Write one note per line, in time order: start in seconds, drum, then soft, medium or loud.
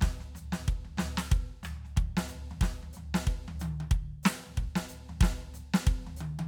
0.01 kick medium
0.01 snare medium
0.01 floor tom medium
0.20 snare soft
0.35 floor tom medium
0.35 hi-hat pedal medium
0.52 snare medium
0.52 floor tom medium
0.68 kick medium
0.85 floor tom medium
0.98 snare loud
0.98 floor tom medium
0.98 hi-hat pedal medium
1.17 snare medium
1.31 kick loud
1.31 floor tom medium
1.63 cross-stick medium
1.63 floor tom medium
1.63 hi-hat pedal medium
1.84 snare soft
1.97 kick medium
1.97 floor tom medium
2.17 snare loud
2.28 floor tom medium
2.28 hi-hat pedal medium
2.51 floor tom medium
2.61 kick medium
2.61 snare medium
2.83 floor tom medium
2.93 floor tom medium
2.93 hi-hat pedal medium
3.15 snare loud
3.27 kick medium
3.27 floor tom medium
3.48 floor tom medium
3.60 hi-hat pedal medium
3.60 high tom loud
3.80 high tom medium
3.91 kick medium
3.91 floor tom soft
4.23 snare loud
4.23 hi-hat pedal medium
4.46 floor tom soft
4.57 kick medium
4.57 floor tom medium
4.76 snare loud
4.89 kick soft
4.89 floor tom soft
4.89 hi-hat pedal medium
5.09 floor tom medium
5.21 kick loud
5.21 snare loud
5.41 floor tom soft
5.54 floor tom soft
5.54 hi-hat pedal medium
5.74 snare loud
5.87 kick loud
5.87 floor tom soft
6.07 floor tom medium
6.17 hi-hat pedal medium
6.21 high tom loud
6.39 high tom loud